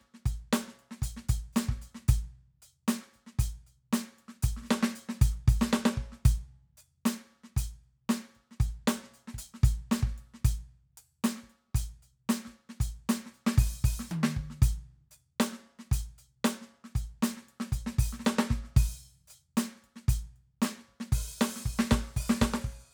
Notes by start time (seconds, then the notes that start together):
0.01 kick, closed hi-hat
0.14 snare
0.26 closed hi-hat, kick
0.53 closed hi-hat, snare
0.68 snare
0.79 closed hi-hat
0.91 snare
1.01 closed hi-hat, kick, snare
1.17 snare
1.29 closed hi-hat, kick
1.53 closed hi-hat, snare, hi-hat pedal
1.69 kick, snare
1.82 closed hi-hat
1.95 snare
2.08 closed hi-hat, kick
2.62 closed hi-hat
2.88 closed hi-hat, snare
3.02 snare
3.13 closed hi-hat, kick
3.27 snare
3.39 closed hi-hat, kick
3.67 closed hi-hat
3.93 closed hi-hat, snare
4.18 closed hi-hat
4.28 snare
4.42 closed hi-hat, kick
4.57 snare
4.61 snare
4.64 snare, hi-hat pedal
4.71 snare
4.83 snare
4.95 closed hi-hat
5.09 snare
5.21 closed hi-hat, kick
5.32 cross-stick
5.48 open hi-hat, kick
5.61 snare
5.69 snare, hi-hat pedal
5.85 snare
5.97 kick, snare
6.12 snare
6.25 closed hi-hat, kick
6.77 hi-hat pedal
7.05 closed hi-hat, snare
7.44 snare
7.57 closed hi-hat, kick
7.84 closed hi-hat
8.09 closed hi-hat, snare
8.35 kick, closed hi-hat
8.51 snare
8.60 closed hi-hat, kick
8.87 closed hi-hat, snare
9.03 snare
9.14 closed hi-hat
9.27 snare
9.34 kick
9.38 closed hi-hat
9.54 snare
9.63 closed hi-hat, kick
9.91 closed hi-hat, snare
10.03 kick, snare
10.18 closed hi-hat
10.34 snare
10.45 closed hi-hat, kick
10.97 closed hi-hat
11.24 closed hi-hat, snare
11.36 snare
11.41 kick, snare
11.50 closed hi-hat
11.75 closed hi-hat, kick
12.02 closed hi-hat
12.29 closed hi-hat, snare
12.45 kick, snare
12.48 snare
12.69 snare
12.80 closed hi-hat, kick
13.09 closed hi-hat, snare
13.26 snare
13.34 closed hi-hat
13.47 snare
13.58 open hi-hat, kick
13.84 open hi-hat, kick
13.99 snare
14.03 snare
14.08 snare, hi-hat pedal, high tom
14.23 snare
14.36 kick
14.50 snare
14.62 open hi-hat, kick
15.11 hi-hat pedal
15.40 closed hi-hat, snare
15.52 snare
15.56 snare
15.79 snare
15.91 closed hi-hat, kick
16.18 closed hi-hat
16.44 closed hi-hat, snare
16.61 snare
16.84 snare
16.95 closed hi-hat, kick
17.22 closed hi-hat, snare
17.37 snare
17.48 closed hi-hat
17.60 snare
17.72 closed hi-hat, kick
17.86 snare
17.98 open hi-hat, kick
18.13 snare
18.19 snare
18.24 snare, hi-hat pedal
18.26 snare
18.38 snare
18.50 kick, snare
18.64 snare
18.76 open hi-hat, kick
19.27 closed hi-hat, hi-hat pedal
19.57 closed hi-hat, snare
19.75 snare
19.83 kick, closed hi-hat
19.96 snare
20.08 closed hi-hat, kick
20.36 closed hi-hat
20.62 closed hi-hat, snare
20.65 snare
20.78 snare
20.88 kick
21.00 snare
21.12 open hi-hat, kick
21.41 open hi-hat, snare
21.56 snare
21.60 snare
21.65 open hi-hat, kick, snare
21.79 snare
21.91 kick, snare
22.03 cross-stick
22.07 cross-stick
22.16 open hi-hat, kick
22.29 snare
22.41 kick, snare
22.54 snare
22.64 kick